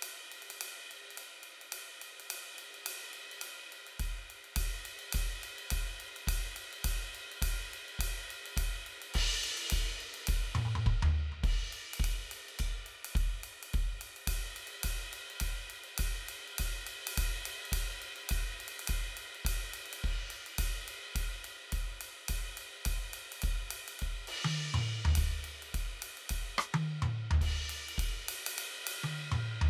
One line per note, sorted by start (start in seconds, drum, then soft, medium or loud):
0.03 ride loud
0.32 ride medium
0.43 ride soft
0.51 ride medium
0.61 ride loud
0.92 ride medium
1.11 ride soft
1.18 ride medium
1.44 ride medium
1.62 ride soft
1.73 ride loud
2.02 ride medium
2.20 ride medium
2.31 ride loud
2.59 ride medium
2.75 ride soft
2.87 ride loud
3.14 ride soft
3.32 ride soft
3.42 ride medium
3.73 ride soft
3.87 ride soft
4.00 kick soft
4.00 ride medium
4.31 ride soft
4.45 ride soft
4.57 kick medium
4.57 ride loud
4.86 ride medium
5.00 ride soft
5.13 kick medium
5.13 ride loud
5.44 ride medium
5.59 ride soft
5.71 kick medium
5.71 ride loud
6.01 ride medium
6.17 ride medium
6.28 kick medium
6.28 ride loud
6.57 ride medium
6.73 ride soft
6.85 kick medium
6.85 ride loud
7.15 ride medium
7.32 ride soft
7.42 kick medium
7.42 ride loud
7.74 ride medium
7.89 ride soft
8.00 kick soft
8.00 ride loud
8.31 ride medium
8.46 ride medium
8.57 kick medium
8.57 ride loud
8.87 ride soft
9.02 ride medium
9.14 kick medium
9.14 ride loud
9.44 ride medium
9.58 ride medium
9.71 kick medium
9.71 ride loud
10.01 ride soft
10.15 ride medium
10.28 kick medium
10.28 ride loud
10.55 mid tom loud
10.76 mid tom loud
10.87 kick medium
10.87 mid tom medium
11.03 floor tom loud
11.32 floor tom soft
11.44 kick medium
11.44 ride medium
11.73 ride medium
11.94 ride medium
12.00 kick medium
12.05 ride medium
12.32 ride medium
12.49 ride bell soft
12.59 kick medium
12.59 ride bell medium
12.87 ride medium
13.05 ride medium
13.16 kick medium
13.16 ride medium
13.44 ride medium
13.63 ride medium
13.74 kick medium
13.74 ride medium
14.02 ride medium
14.17 ride medium
14.28 kick medium
14.28 ride loud
14.57 ride medium
14.68 ride medium
14.84 kick soft
14.84 ride loud
15.14 ride medium
15.31 ride soft
15.41 kick soft
15.41 ride loud
15.70 ride medium
15.84 ride soft
15.98 kick medium
15.98 ride loud
16.29 ride medium
16.48 ride soft
16.59 kick soft
16.59 ride loud
16.87 ride medium
17.08 ride loud
17.18 kick medium
17.18 ride loud
17.46 ride medium
17.66 ride soft
17.73 kick medium
17.73 ride loud
18.02 ride medium
18.16 ride soft
18.30 kick medium
18.30 ride loud
18.61 ride medium
18.69 ride medium
18.80 ride medium
18.88 kick medium
18.88 ride loud
19.18 ride medium
19.35 ride soft
19.45 kick medium
19.45 ride loud
19.74 ride medium
19.86 ride soft
19.93 ride medium
20.05 kick medium
20.05 ride medium
20.31 ride medium
20.47 ride medium
20.59 kick medium
20.59 ride loud
20.88 ride medium
21.16 kick medium
21.16 ride loud
21.45 ride medium
21.73 kick medium
21.73 ride medium
22.01 ride medium
22.29 kick soft
22.29 ride loud
22.58 ride medium
22.86 kick medium
22.86 ride loud
23.14 ride medium
23.33 ride medium
23.44 kick medium
23.71 ride loud
23.88 ride medium
24.00 kick soft
24.00 ride medium
24.28 ride medium
24.45 high tom loud
24.75 mid tom loud
25.05 floor tom loud
25.16 kick medium
25.16 ride loud
25.45 ride medium
25.63 ride medium
25.75 kick soft
25.75 ride medium
26.03 ride medium
26.18 ride soft
26.30 kick soft
26.30 ride loud
26.59 cross-stick medium
26.75 high tom loud
27.03 mid tom loud
27.31 floor tom loud
27.42 kick soft
27.42 ride medium
27.70 ride medium
27.89 ride medium
27.99 kick medium
27.99 ride medium
28.29 ride loud
28.47 ride loud
28.59 ride loud
28.87 ride loud
29.04 high tom medium
29.32 mid tom loud
29.62 floor tom loud